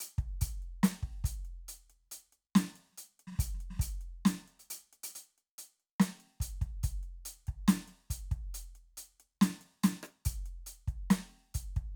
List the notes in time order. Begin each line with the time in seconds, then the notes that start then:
0.01 closed hi-hat
0.19 kick, closed hi-hat
0.42 closed hi-hat, kick
0.63 closed hi-hat
0.84 closed hi-hat, snare
1.03 kick, closed hi-hat
1.25 closed hi-hat, kick
1.46 closed hi-hat
1.69 closed hi-hat
1.90 closed hi-hat
2.12 closed hi-hat
2.33 closed hi-hat
2.56 closed hi-hat, snare
2.76 closed hi-hat
2.93 snare
2.98 closed hi-hat
3.20 closed hi-hat
3.28 snare
3.32 snare
3.36 snare
3.39 closed hi-hat, kick, snare
3.55 snare
3.61 closed hi-hat
3.71 snare
3.74 snare
3.77 snare
3.79 closed hi-hat, kick, snare
4.02 closed hi-hat
4.26 closed hi-hat, snare
4.48 closed hi-hat
4.60 closed hi-hat
4.71 closed hi-hat
4.93 closed hi-hat
5.04 closed hi-hat
5.16 closed hi-hat
5.39 closed hi-hat
5.59 closed hi-hat
5.80 closed hi-hat
6.00 closed hi-hat, snare
6.21 closed hi-hat
6.41 closed hi-hat, kick
6.62 kick, snare, closed hi-hat
6.84 closed hi-hat, kick
7.04 closed hi-hat
7.26 closed hi-hat
7.48 kick, closed hi-hat
7.69 closed hi-hat, snare
7.88 snare, closed hi-hat
8.11 closed hi-hat, kick
8.32 kick, closed hi-hat
8.55 closed hi-hat
8.76 closed hi-hat
8.98 closed hi-hat
9.21 closed hi-hat
9.42 closed hi-hat, snare
9.62 closed hi-hat
9.84 closed hi-hat, snare
10.04 cross-stick, closed hi-hat
10.26 closed hi-hat, kick
10.46 closed hi-hat
10.67 closed hi-hat
10.88 kick, closed hi-hat
11.11 closed hi-hat, snare
11.30 closed hi-hat
11.55 closed hi-hat, kick
11.77 kick, closed hi-hat